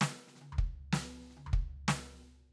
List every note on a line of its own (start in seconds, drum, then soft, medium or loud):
0.00 snare loud
0.00 hi-hat pedal soft
0.28 snare soft
0.36 snare soft
0.41 high tom soft
0.52 floor tom medium
0.58 kick medium
0.93 snare loud
1.22 snare soft
1.30 snare soft
1.37 high tom soft
1.46 floor tom medium
1.53 kick medium
1.88 snare loud